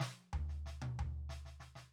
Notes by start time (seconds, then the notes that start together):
0.00 snare
0.20 snare
0.33 floor tom
0.49 snare
0.66 snare
0.82 high tom
0.99 floor tom
1.29 snare
1.45 snare
1.60 snare
1.75 snare